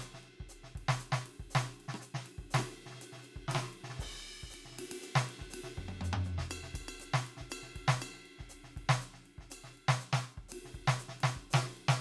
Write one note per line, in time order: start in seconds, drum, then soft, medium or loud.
0.01 hi-hat pedal medium
0.01 ride bell soft
0.15 snare soft
0.23 snare soft
0.23 hi-hat pedal soft
0.23 ride soft
0.36 snare soft
0.41 kick soft
0.41 snare soft
0.49 hi-hat pedal medium
0.49 ride bell soft
0.64 snare soft
0.71 hi-hat pedal soft
0.76 kick soft
0.76 ride soft
0.81 kick soft
0.89 snare loud
1.00 hi-hat pedal loud
1.00 ride medium
1.13 snare medium
1.26 ride medium
1.40 kick soft
1.51 hi-hat pedal loud
1.56 snare loud
1.56 ride medium
1.64 snare soft
1.81 ride soft
1.89 snare medium
1.95 cross-stick medium
2.00 snare soft
2.00 hi-hat pedal loud
2.00 ride medium
2.15 snare medium
2.27 ride medium
2.39 kick soft
2.44 kick soft
2.51 snare loud
2.51 hi-hat pedal medium
2.55 ride loud
2.59 cross-stick medium
2.63 cross-stick soft
2.63 snare soft
2.69 snare soft
2.86 snare soft
2.91 snare soft
2.95 snare soft
3.02 hi-hat pedal loud
3.02 ride medium
3.13 snare soft
3.17 snare soft
3.23 hi-hat pedal medium
3.23 ride soft
3.36 kick soft
3.49 snare medium
3.49 hi-hat pedal medium
3.49 ride loud
3.55 cross-stick soft
3.55 snare medium
3.63 snare soft
3.74 ride soft
3.84 snare medium
3.90 snare medium
3.96 kick medium
3.96 snare soft
4.01 hi-hat pedal medium
4.01 crash medium
4.06 kick soft
4.12 snare soft
4.18 snare soft
4.44 kick soft
4.51 hi-hat pedal medium
4.51 ride medium
4.66 snare soft
4.72 snare soft
4.76 snare soft
4.79 snare soft
4.79 ride loud
4.81 snare soft
4.92 ride loud
5.02 hi-hat pedal medium
5.02 ride bell medium
5.16 snare loud
5.22 cross-stick soft
5.22 hi-hat pedal soft
5.30 ride medium
5.39 kick soft
5.39 snare soft
5.51 hi-hat pedal medium
5.51 ride loud
5.64 snare soft
5.78 kick soft
5.78 mid tom medium
5.89 mid tom medium
6.01 hi-hat pedal loud
6.01 mid tom loud
6.14 mid tom loud
6.25 hi-hat pedal medium
6.25 mid tom medium
6.39 kick soft
6.39 snare medium
6.51 hi-hat pedal loud
6.51 ride bell loud
6.64 snare soft
6.73 kick medium
6.73 hi-hat pedal soft
6.73 ride bell medium
6.81 kick soft
6.89 ride bell loud
7.00 hi-hat pedal loud
7.00 ride medium
7.14 snare loud
7.23 hi-hat pedal soft
7.27 ride medium
7.38 kick soft
7.38 snare soft
7.50 hi-hat pedal medium
7.50 ride bell loud
7.63 snare soft
7.72 kick soft
7.72 hi-hat pedal soft
7.76 ride medium
7.88 snare loud
8.01 hi-hat pedal loud
8.01 ride bell loud
8.14 snare soft
8.22 hi-hat pedal soft
8.26 ride soft
8.39 kick soft
8.39 snare soft
8.50 hi-hat pedal loud
8.50 ride medium
8.50 floor tom soft
8.64 snare soft
8.72 hi-hat pedal soft
8.77 kick soft
8.77 ride soft
8.83 kick soft
8.90 snare loud
9.01 hi-hat pedal loud
9.01 ride soft
9.14 snare soft
9.22 hi-hat pedal soft
9.22 ride soft
9.39 kick soft
9.39 snare soft
9.51 hi-hat pedal loud
9.51 ride bell medium
9.64 snare soft
9.73 hi-hat pedal soft
9.78 ride soft
9.89 snare loud
10.01 hi-hat pedal medium
10.13 snare loud
10.21 hi-hat pedal soft
10.38 kick soft
10.49 hi-hat pedal loud
10.49 ride loud
10.66 snare soft
10.70 hi-hat pedal soft
10.75 kick soft
10.75 ride soft
10.88 snare loud
10.99 hi-hat pedal loud
10.99 ride medium
11.09 snare medium
11.21 snare loud
11.21 hi-hat pedal soft
11.21 ride medium
11.37 kick soft
11.51 snare loud
11.51 hi-hat pedal loud
11.51 ride loud
11.64 snare soft
11.73 hi-hat pedal soft
11.78 ride soft
11.89 snare loud